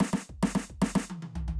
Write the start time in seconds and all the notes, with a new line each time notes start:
0.01 snare
0.13 snare
0.30 kick
0.43 snare
0.55 snare
0.70 kick
0.82 snare
0.96 snare
1.10 high tom
1.23 high tom
1.36 floor tom
1.48 floor tom